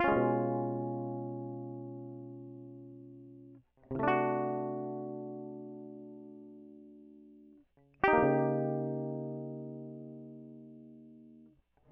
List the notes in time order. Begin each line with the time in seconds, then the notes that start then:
0.00 F4
0.04 G#3 C#4
0.14 B2 D3
3.92 C3
3.96 E3 A3
4.03 D4
4.08 F#4
8.04 G4
8.08 D#4
8.14 A#3
8.19 E3
8.24 C#3